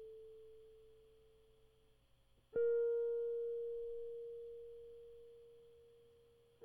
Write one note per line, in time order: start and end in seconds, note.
2.57 5.62 A#4